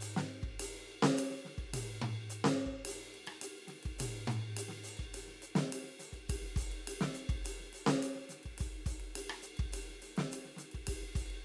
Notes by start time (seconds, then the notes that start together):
0.01 hi-hat pedal, ride
0.17 snare
0.43 kick
0.60 hi-hat pedal, ride
1.03 snare
1.17 hi-hat pedal, ride
1.30 snare
1.45 snare
1.58 kick
1.74 hi-hat pedal, high tom, ride
2.02 high tom
2.30 hi-hat pedal, ride
2.45 snare
2.66 kick
2.85 hi-hat pedal, ride
3.15 ride
3.27 cross-stick, ride
3.42 hi-hat pedal, ride
3.68 snare, ride
3.83 kick, ride
3.99 hi-hat pedal, high tom, ride
4.28 hi-hat pedal, high tom
4.57 hi-hat pedal, ride
4.69 snare
4.84 hi-hat pedal, ride
4.98 kick, ride
5.14 hi-hat pedal, ride
5.28 snare
5.42 hi-hat pedal, ride
5.56 snare, ride
5.73 hi-hat pedal, ride
5.83 snare
6.00 snare, hi-hat pedal, ride
6.13 kick, ride
6.29 kick, hi-hat pedal, ride
6.42 snare
6.56 kick, hi-hat pedal, ride
6.72 ride
6.88 hi-hat pedal, ride
7.01 snare
7.15 hi-hat pedal, ride
7.29 kick, ride
7.45 hi-hat pedal, ride
7.60 snare
7.73 hi-hat pedal, ride
7.87 snare, ride
8.03 hi-hat pedal, ride
8.15 snare
8.29 snare, hi-hat pedal, ride
8.44 kick, ride
8.58 kick, hi-hat pedal, ride
8.86 kick, hi-hat pedal, ride
9.00 ride
9.16 hi-hat pedal, ride
9.30 cross-stick
9.43 hi-hat pedal, ride
9.57 kick, ride
9.73 hi-hat pedal, ride
9.89 snare
10.02 hi-hat pedal, ride
10.17 snare, ride
10.32 hi-hat pedal, ride
10.45 snare
10.57 snare, hi-hat pedal, ride
10.72 kick, ride
10.87 kick, hi-hat pedal, ride
11.02 snare
11.16 kick, hi-hat pedal, ride
11.30 ride